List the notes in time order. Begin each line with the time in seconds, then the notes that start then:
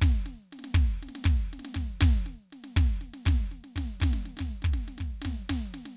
0.01 kick, snare, hi-hat pedal
0.26 snare
0.52 snare, hi-hat pedal
0.59 snare
0.65 snare
0.75 kick, snare
1.02 snare, hi-hat pedal
1.09 snare
1.16 snare
1.25 kick, snare
1.52 snare, hi-hat pedal
1.60 snare
1.65 snare
1.75 kick, snare
2.01 kick, snare, hi-hat pedal
2.27 snare
2.51 snare, hi-hat pedal
2.64 snare
2.77 kick, snare
3.01 snare, hi-hat pedal
3.14 snare
3.26 kick, snare
3.29 snare
3.52 snare, hi-hat pedal
3.64 snare
3.75 kick, snare, hi-hat pedal
3.78 snare
4.01 kick, snare, hi-hat pedal
4.04 snare
4.14 snare
4.26 snare
4.38 snare
4.39 kick, snare
4.49 hi-hat pedal
4.63 kick, snare
4.71 snare, hi-hat pedal
4.88 snare
5.00 kick, hi-hat pedal
5.22 snare
5.25 kick, snare
5.49 kick, snare, hi-hat pedal
5.71 snare, hi-hat pedal
5.86 snare